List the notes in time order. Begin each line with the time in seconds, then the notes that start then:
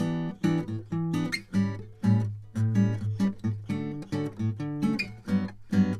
0.01 E3 B3 D4 G4
0.44 E3 B3 D4 G4
0.69 A2
0.93 E3
1.14 B3 D4 G4
1.55 G3 C#4 E4
2.04 A2 G3 C#4 E4
2.56 A2
2.76 G3 C#4 E4
3.20 G3 C#4 E4
3.45 A2
3.70 D3 A3 C#4 F#4
4.13 D3 A3 C#4 F#4
4.40 A2
4.61 D3
4.83 A3 C#4 F#4
5.29 G2 F#3 B3 D4
5.74 G2 F#3 B3
5.86 D4